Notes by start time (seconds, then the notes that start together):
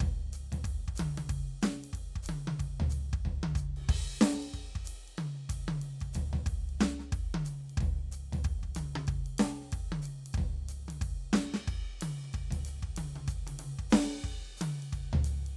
0.01 kick, floor tom, ride
0.22 kick
0.33 hi-hat pedal, ride
0.53 floor tom, ride
0.65 kick, ride
0.89 kick
0.96 hi-hat pedal, ride
1.00 high tom
1.18 high tom, ride
1.30 kick, ride
1.63 snare, hi-hat pedal, ride
1.85 ride
1.94 kick, ride
2.16 kick
2.24 hi-hat pedal, ride
2.30 high tom
2.48 high tom
2.60 kick, ride
2.81 floor tom
2.90 hi-hat pedal, ride
3.14 kick
3.26 floor tom
3.44 high tom
3.56 kick, hi-hat pedal
3.77 ride
3.90 kick, crash
4.22 snare, hi-hat pedal, ride
4.43 ride
4.54 kick, ride
4.76 kick
4.85 hi-hat pedal, ride
5.09 ride
5.19 high tom, ride
5.50 kick, hi-hat pedal, ride
5.69 high tom
5.82 ride
6.02 kick, ride
6.14 floor tom, hi-hat pedal, ride
6.34 floor tom
6.47 kick, ride
6.70 ride
6.80 snare, hi-hat pedal, ride
7.00 snare
7.13 kick, ride
7.35 high tom
7.46 hi-hat pedal, ride
7.70 ride
7.78 kick, floor tom, ride
8.12 kick, hi-hat pedal, ride
8.33 floor tom, ride
8.45 kick, ride
8.64 kick
8.76 hi-hat pedal, high tom, ride
8.96 high tom
9.08 kick, ride
9.27 ride
9.39 snare, hi-hat pedal, ride
9.62 snare
9.73 kick, ride
9.93 high tom
10.03 hi-hat pedal, ride
10.27 ride
10.34 kick, ride
10.38 floor tom
10.68 kick, hi-hat pedal, ride
10.89 high tom, ride
11.02 kick, ride
11.34 snare, hi-hat pedal, ride
11.55 snare
11.68 kick, ride
12.01 hi-hat pedal, high tom, ride
12.25 high tom
12.34 kick, ride
12.38 hi-hat pedal
12.51 floor tom, ride
12.66 hi-hat pedal, ride
12.83 kick
12.97 high tom, ride
13.16 high tom
13.29 kick, hi-hat pedal, ride
13.48 high tom, ride
13.60 high tom, ride
13.79 kick
13.91 snare, hi-hat pedal, crash
14.25 kick
14.29 ride
14.58 hi-hat pedal
14.62 high tom, ride
14.83 ride
14.93 kick, ride
15.14 floor tom
15.25 hi-hat pedal, ride
15.47 ride